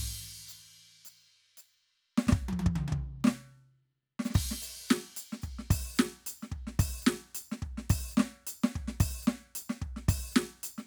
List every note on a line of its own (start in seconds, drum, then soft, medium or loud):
0.49 percussion medium
1.06 percussion medium
1.58 percussion medium
2.18 snare loud
2.27 kick medium
2.27 snare loud
2.33 kick loud
2.49 high tom loud
2.53 kick medium
2.60 high tom loud
2.67 kick loud
2.76 kick medium
2.76 mid tom loud
2.88 mid tom loud
2.93 kick medium
3.21 kick soft
3.21 snare loud
3.28 snare loud
4.20 snare medium
4.25 snare medium
4.25 percussion medium
4.31 snare medium
4.35 kick loud
4.35 crash loud
4.51 snare medium
4.62 percussion medium
4.90 snare loud
4.90 percussion medium
5.17 percussion loud
5.33 snare medium
5.42 kick medium
5.42 percussion soft
5.59 snare medium
5.71 kick loud
5.71 percussion loud
5.98 snare loud
5.98 percussion medium
6.27 percussion loud
6.43 snare medium
6.52 kick medium
6.67 snare medium
6.80 kick loud
6.80 percussion loud
7.03 percussion medium
7.07 snare loud
7.35 percussion loud
7.52 snare medium
7.63 kick medium
7.78 snare medium
7.90 kick loud
7.90 percussion loud
8.12 percussion medium
8.18 snare loud
8.20 snare loud
8.47 percussion loud
8.64 snare loud
8.76 kick medium
8.88 snare medium
9.01 kick loud
9.01 percussion loud
9.23 percussion medium
9.28 snare loud
9.56 percussion loud
9.70 snare medium
9.82 kick medium
9.97 snare medium
10.09 kick loud
10.09 percussion loud
10.33 snare loud
10.33 percussion medium
10.64 percussion loud
10.79 snare medium